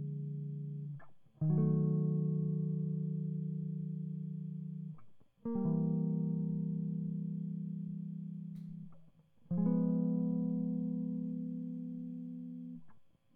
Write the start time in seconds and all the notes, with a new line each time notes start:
1.42 D#3
1.50 F#3
1.58 A3
5.46 A#3
5.56 G3
5.66 E3
9.52 F3
9.58 G#3
9.66 B3